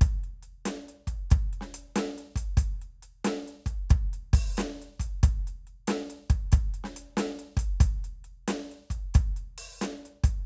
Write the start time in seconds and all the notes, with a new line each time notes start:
0.01 kick, closed hi-hat
0.24 closed hi-hat
0.43 closed hi-hat
0.65 snare, closed hi-hat
0.88 closed hi-hat
1.07 kick, closed hi-hat
1.30 kick, closed hi-hat
1.53 closed hi-hat
1.61 snare
1.74 closed hi-hat
1.96 snare, closed hi-hat
2.18 closed hi-hat
2.36 kick, closed hi-hat
2.57 kick, closed hi-hat
2.82 closed hi-hat
3.02 closed hi-hat
3.24 snare, closed hi-hat
3.47 closed hi-hat
3.66 kick, closed hi-hat
3.90 kick, closed hi-hat
4.13 closed hi-hat
4.33 kick, open hi-hat
4.57 snare, hi-hat pedal, open hi-hat
4.82 closed hi-hat
4.99 kick, closed hi-hat
5.23 kick, closed hi-hat
5.47 closed hi-hat
5.67 closed hi-hat
5.87 snare, closed hi-hat
6.10 closed hi-hat
6.30 kick, closed hi-hat
6.52 kick, closed hi-hat
6.74 closed hi-hat
6.84 snare
6.96 closed hi-hat
7.17 snare, closed hi-hat
7.39 closed hi-hat
7.57 kick, closed hi-hat
7.80 kick, closed hi-hat
8.04 closed hi-hat
8.24 closed hi-hat
8.48 snare, closed hi-hat
8.71 closed hi-hat
8.90 kick, closed hi-hat
9.14 kick, closed hi-hat
9.36 closed hi-hat
9.58 open hi-hat
9.81 snare, hi-hat pedal, open hi-hat
10.05 closed hi-hat
10.24 kick, closed hi-hat